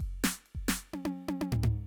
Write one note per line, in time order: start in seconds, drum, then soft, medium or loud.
0.00 kick soft
0.00 ride medium
0.24 snare loud
0.24 ride medium
0.46 ride medium
0.55 kick soft
0.68 snare loud
0.68 ride medium
0.93 high tom loud
1.05 high tom loud
1.28 high tom loud
1.41 high tom loud
1.52 floor tom loud
1.63 floor tom loud